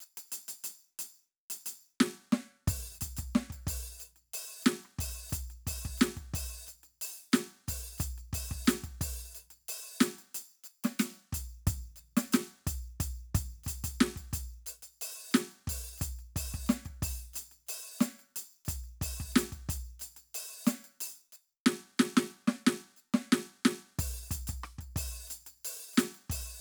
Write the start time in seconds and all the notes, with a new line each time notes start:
0.01 percussion
0.18 percussion
0.32 percussion
0.49 percussion
0.64 percussion
0.99 percussion
1.51 percussion
1.66 percussion
2.01 snare
2.33 snare
2.68 kick, percussion
2.95 percussion
3.01 kick, percussion
3.17 kick, percussion
3.36 snare
3.50 kick, percussion
3.67 kick, percussion
4.00 percussion
4.16 percussion
4.34 percussion
4.63 snare, percussion
4.67 percussion
4.83 cross-stick, percussion
4.99 kick, percussion
5.30 kick, percussion
5.33 percussion
5.51 percussion
5.67 kick, percussion
5.85 kick
5.98 snare, percussion
6.02 percussion
6.17 kick, percussion
6.34 kick, percussion
6.67 percussion
6.84 percussion
7.02 percussion
7.33 snare, percussion
7.35 percussion
7.68 kick, percussion
7.98 kick, percussion
8.01 percussion
8.18 percussion
8.33 kick, percussion
8.51 kick
8.66 snare, percussion
8.69 percussion
8.84 kick, percussion
9.01 kick, percussion
9.35 percussion
9.51 percussion
9.69 percussion
10.00 snare, percussion
10.19 percussion
10.35 percussion
10.64 percussion
10.84 snare, percussion
11.00 snare, percussion
11.33 kick, percussion
11.67 kick, percussion
11.96 percussion
12.17 snare, percussion
12.33 snare, percussion
12.67 kick, percussion
13.01 kick, percussion
13.35 kick, percussion
13.64 kick, percussion
13.68 percussion
13.84 kick, percussion
14.01 snare
14.16 kick, percussion
14.33 kick, percussion
14.67 percussion
14.83 percussion
15.02 percussion
15.32 snare, percussion
15.35 percussion
15.52 percussion
15.68 kick, percussion
15.98 kick, percussion
16.02 percussion
16.19 percussion
16.36 kick, percussion
16.54 kick
16.67 snare, percussion
16.71 percussion
16.86 kick, percussion
17.03 kick, percussion
17.34 percussion
17.36 percussion
17.52 percussion
17.67 percussion
17.69 percussion
17.99 snare, percussion
18.02 percussion
18.20 percussion
18.36 percussion
18.66 kick, percussion
18.69 percussion
18.84 percussion
19.02 kick, percussion
19.20 kick, percussion
19.32 snare, percussion
19.38 percussion
19.53 kick, percussion
19.69 kick, percussion
20.00 percussion
20.02 percussion
20.17 percussion
20.35 percussion
20.65 snare, percussion
20.68 percussion
20.85 percussion
21.01 percussion
21.33 percussion
21.67 snare
21.98 snare, percussion
22.17 snare
22.48 snare
22.67 snare
22.97 percussion
23.14 snare
23.33 snare
23.66 snare
23.99 kick, percussion
24.28 kick, percussion
24.32 percussion
24.48 kick, percussion
24.64 cross-stick
24.79 kick, percussion
24.96 kick, percussion
25.28 percussion
25.31 percussion
25.47 percussion
25.65 percussion
25.94 percussion
25.98 snare, percussion
26.15 percussion
26.30 kick, percussion